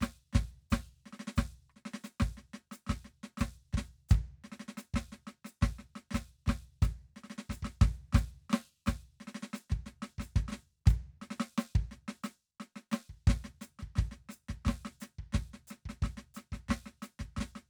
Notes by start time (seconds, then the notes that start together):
0.01 kick, snare, hi-hat pedal
0.03 snare
0.33 snare
0.35 kick, snare
0.71 kick, snare, hi-hat pedal
1.06 snare
1.13 snare
1.20 snare
1.28 snare
1.36 kick, snare, hi-hat pedal
1.70 cross-stick
1.76 snare
1.86 snare
1.94 snare
2.04 snare, hi-hat pedal
2.20 kick, snare
2.37 snare
2.54 snare
2.72 snare, hi-hat pedal
2.87 kick, snare
2.90 snare
3.05 snare
3.24 snare
3.38 kick, snare, hi-hat pedal
3.41 snare
3.73 kick, snare
3.78 snare
4.09 kick, snare, hi-hat pedal
4.44 snare
4.52 snare
4.60 snare
4.68 snare
4.78 snare, hi-hat pedal
4.94 kick, snare
5.12 snare
5.27 snare
5.45 snare, hi-hat pedal
5.62 kick, snare
5.79 snare
5.96 snare
6.11 kick, snare, hi-hat pedal
6.15 snare
6.47 kick, snare
6.49 snare
6.82 kick, snare, hi-hat pedal
7.16 snare
7.24 snare
7.30 snare
7.38 snare
7.50 kick, snare, hi-hat pedal
7.63 kick, snare
7.82 kick, snare
8.13 kick, snare
8.15 snare, hi-hat pedal
8.50 snare
8.53 snare
8.87 kick, snare, hi-hat pedal
9.21 snare
9.27 snare
9.35 snare
9.43 snare
9.53 snare, hi-hat pedal
9.70 kick, snare
9.86 snare
10.02 snare
10.19 kick, snare, hi-hat pedal
10.36 kick, snare
10.48 kick, snare
10.52 snare
10.86 kick, snare, hi-hat pedal
11.22 snare
11.31 snare
11.40 snare
11.58 snare, hi-hat pedal
11.75 kick
11.92 snare
12.08 snare
12.24 snare, hi-hat pedal
12.60 snare
12.76 snare
12.92 snare, hi-hat pedal
13.10 kick
13.27 kick, snare
13.29 snare
13.45 snare
13.61 snare, hi-hat pedal
13.79 kick, snare
13.96 kick, snare
14.12 snare
14.29 snare, hi-hat pedal
14.49 kick, snare
14.65 kick, snare
14.68 snare
14.85 snare
15.01 snare, hi-hat pedal
15.19 kick
15.33 kick, snare
15.54 snare
15.68 snare, hi-hat pedal
15.86 kick, snare
16.02 kick, snare
16.18 snare
16.35 snare, hi-hat pedal
16.52 kick, snare
16.69 kick, snare
16.71 snare
16.86 snare
17.02 snare, hi-hat pedal
17.20 kick, snare
17.37 kick, snare
17.41 snare
17.56 snare